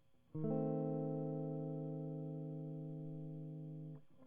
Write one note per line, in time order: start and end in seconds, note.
0.36 4.01 D#3
0.45 4.01 A3
0.51 4.00 C4